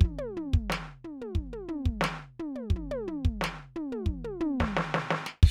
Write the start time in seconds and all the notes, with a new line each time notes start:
0.01 kick, floor tom
0.18 high tom
0.36 floor tom
0.54 kick
0.70 snare
0.72 snare
1.04 floor tom
1.21 mid tom
1.35 kick
1.47 kick
1.53 mid tom
1.68 floor tom
1.86 kick
2.01 snare
2.04 snare
2.39 floor tom
2.56 high tom
2.70 kick
2.75 floor tom
2.91 high tom
3.07 floor tom
3.25 kick
3.41 snare
3.44 snare
3.75 floor tom
3.92 mid tom
4.06 kick
4.24 mid tom
4.40 floor tom
4.60 kick, snare
4.75 kick, snare
4.94 snare
5.11 snare
5.27 snare
5.43 kick, crash